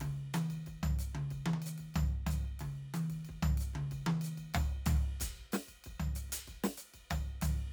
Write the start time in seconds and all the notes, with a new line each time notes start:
0.01 kick, mid tom, ride
0.34 hi-hat pedal, high tom, ride bell
0.50 kick, ride bell
0.67 kick, ride bell
0.83 floor tom
0.99 hi-hat pedal, ride
1.14 kick, mid tom
1.31 kick, ride bell
1.46 high tom
1.54 high tom
1.62 hi-hat pedal, ride bell
1.78 kick, ride
1.95 kick, floor tom, ride bell
2.27 floor tom, hi-hat pedal, ride bell
2.45 kick
2.60 kick, mid tom, ride
2.94 hi-hat pedal, high tom, ride
3.10 kick, ride
3.25 ride bell
3.29 kick
3.43 floor tom
3.58 hi-hat pedal, ride
3.74 kick, mid tom
3.92 kick, ride bell
4.07 high tom
4.13 high tom
4.22 hi-hat pedal, ride bell
4.38 kick, ride bell
4.54 kick, ride bell, floor tom
4.86 floor tom, hi-hat pedal, ride
5.21 kick, closed hi-hat, ride bell
5.52 snare, hi-hat pedal, ride bell
5.68 kick, ride bell
5.84 kick, ride bell
6.00 floor tom
6.16 hi-hat pedal, ride
6.30 kick, closed hi-hat
6.48 kick, ride bell
6.64 snare
6.78 hi-hat pedal, ride
6.94 kick, ride bell
7.11 kick, ride bell, floor tom
7.42 floor tom, hi-hat pedal, ride
7.55 kick